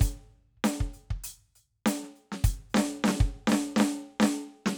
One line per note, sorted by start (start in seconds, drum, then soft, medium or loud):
0.01 open hi-hat loud
0.01 kick loud
0.57 kick soft
0.64 open hi-hat loud
0.64 snare loud
0.64 hi-hat pedal soft
0.80 kick medium
0.94 closed hi-hat soft
1.10 kick medium
1.24 closed hi-hat loud
1.55 closed hi-hat soft
1.86 closed hi-hat loud
1.86 snare loud
2.03 snare soft
2.16 closed hi-hat soft
2.32 snare medium
2.44 open hi-hat loud
2.44 kick loud
2.70 hi-hat pedal soft
2.75 snare loud
2.77 snare loud
3.04 snare loud
3.08 snare loud
3.20 kick loud
3.47 snare loud
3.52 snare loud
3.76 snare loud
3.80 snare loud
4.20 snare loud
4.23 snare loud
4.66 snare loud